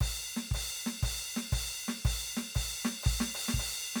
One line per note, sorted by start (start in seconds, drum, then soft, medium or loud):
0.01 kick medium
0.01 crash loud
0.37 snare medium
0.52 kick medium
0.52 crash loud
0.57 kick soft
0.87 snare medium
1.03 kick medium
1.03 crash loud
1.37 snare medium
1.52 kick medium
1.52 crash loud
1.89 snare medium
2.05 kick medium
2.05 crash loud
2.37 snare medium
2.55 kick medium
2.55 crash loud
2.85 snare medium
3.03 kick medium
3.03 crash loud
3.21 snare medium
3.35 crash loud
3.49 snare medium
3.54 kick medium
3.58 kick soft
3.58 crash loud
3.96 snare medium